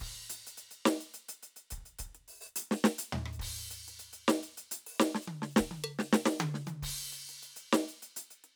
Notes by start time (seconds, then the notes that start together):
0.01 kick, crash
0.11 kick
0.30 closed hi-hat
0.47 closed hi-hat
0.58 closed hi-hat
0.71 closed hi-hat
0.86 snare
1.01 closed hi-hat
1.14 closed hi-hat
1.29 closed hi-hat
1.43 closed hi-hat
1.57 closed hi-hat
1.71 closed hi-hat, kick
1.78 kick
1.81 kick
1.86 closed hi-hat
1.99 closed hi-hat, kick
2.15 closed hi-hat
2.28 open hi-hat
2.41 open hi-hat
2.46 hi-hat pedal
2.56 closed hi-hat
2.72 snare
2.85 snare
2.99 closed hi-hat
3.13 floor tom
3.26 cross-stick
3.33 hi-hat pedal
3.40 kick, crash
3.46 kick
3.48 kick
3.59 closed hi-hat
3.71 closed hi-hat
3.88 closed hi-hat
4.00 closed hi-hat
4.13 closed hi-hat
4.29 snare
4.43 closed hi-hat
4.58 closed hi-hat
4.72 closed hi-hat
4.87 open hi-hat
4.97 snare, hi-hat pedal
5.15 snare
5.22 hi-hat pedal
5.28 high tom
5.42 snare
5.51 hi-hat pedal
5.57 kick, snare
5.72 high tom
5.84 percussion
5.99 snare
6.13 snare
6.26 snare
6.39 hi-hat pedal, high tom
6.55 snare
6.67 hi-hat pedal, high tom
6.83 kick, crash
7.13 closed hi-hat
7.30 closed hi-hat
7.43 closed hi-hat
7.57 closed hi-hat
7.73 snare
7.89 closed hi-hat
8.03 closed hi-hat
8.17 closed hi-hat
8.31 closed hi-hat
8.44 closed hi-hat